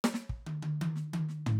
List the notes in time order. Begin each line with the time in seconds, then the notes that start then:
0.05 snare
0.14 snare
0.29 kick
0.47 high tom
0.62 high tom
0.81 high tom
0.96 snare
1.13 high tom
1.29 snare
1.46 floor tom